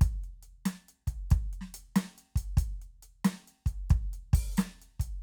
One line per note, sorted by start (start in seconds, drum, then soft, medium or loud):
0.01 kick loud
0.01 closed hi-hat loud
0.24 closed hi-hat soft
0.43 closed hi-hat medium
0.65 snare loud
0.65 closed hi-hat loud
0.88 closed hi-hat medium
1.07 kick medium
1.07 closed hi-hat medium
1.30 kick loud
1.30 closed hi-hat medium
1.53 closed hi-hat soft
1.61 snare medium
1.74 closed hi-hat loud
1.96 snare loud
1.96 closed hi-hat loud
2.18 closed hi-hat medium
2.36 kick medium
2.36 closed hi-hat loud
2.57 kick loud
2.57 closed hi-hat loud
2.82 closed hi-hat soft
3.02 closed hi-hat medium
3.24 snare loud
3.24 closed hi-hat loud
3.47 closed hi-hat medium
3.66 kick medium
3.66 closed hi-hat medium
3.90 kick loud
3.90 closed hi-hat medium
4.13 closed hi-hat medium
4.33 kick loud
4.33 open hi-hat loud
4.57 snare loud
4.57 hi-hat pedal loud
4.57 open hi-hat loud
4.82 closed hi-hat medium
4.99 kick medium
4.99 closed hi-hat medium